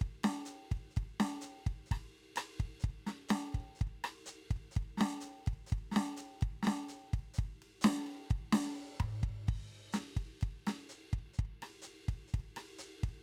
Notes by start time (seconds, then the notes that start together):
0.01 kick, ride
0.07 kick
0.24 snare, ride
0.46 hi-hat pedal, ride
0.72 kick, ride
0.77 kick
0.91 hi-hat pedal
0.97 kick, ride
1.03 kick
1.21 snare, ride
1.27 cross-stick
1.42 hi-hat pedal, ride
1.67 kick, ride
1.72 kick
1.87 hi-hat pedal
1.92 kick, cross-stick, ride
1.98 kick
2.37 cross-stick, hi-hat pedal, ride
2.61 kick, snare, ride
2.66 kick
2.81 hi-hat pedal, ride
2.85 kick
2.90 kick
3.07 snare, ride
3.30 snare, hi-hat pedal, ride
3.53 kick, ride
3.60 kick, snare
3.67 snare
3.76 hi-hat pedal
3.80 kick, ride
3.88 kick
4.05 cross-stick, ride
4.27 hi-hat pedal, ride
4.51 kick, ride
4.57 kick
4.72 hi-hat pedal
4.76 kick, ride
4.83 kick
4.98 snare
5.02 snare
5.21 hi-hat pedal, ride
5.47 kick, ride
5.54 kick
5.67 hi-hat pedal, ride
5.73 kick
5.79 kick
5.92 snare
5.97 snare
6.17 snare, hi-hat pedal, ride
6.21 snare
6.42 kick, ride
6.64 snare
6.68 snare
6.89 hi-hat pedal, ride
7.04 snare
7.14 kick, ride
7.20 kick
7.35 hi-hat pedal
7.39 kick, ride
7.45 kick
7.63 ride
7.82 snare, hi-hat pedal, ride
8.07 ride
8.14 snare
8.21 snare
8.31 kick, ride
8.38 kick
8.53 snare, hi-hat pedal, ride
8.63 snare
8.77 ride
9.01 kick, mid tom
9.24 kick
9.29 kick
9.37 snare
9.48 kick, crash
9.56 kick
9.93 snare, hi-hat pedal, ride
10.17 kick, ride
10.23 snare
10.41 kick, hi-hat pedal, ride
10.68 snare, ride
10.90 hi-hat pedal
11.14 kick, ride
11.19 kick
11.34 hi-hat pedal
11.40 kick
11.45 kick
11.63 cross-stick, ride
11.83 hi-hat pedal
11.88 ride
12.09 kick, ride
12.14 kick
12.29 hi-hat pedal
12.35 kick, ride
12.40 kick
12.57 cross-stick, ride
12.79 hi-hat pedal, ride
13.04 kick, ride
13.09 kick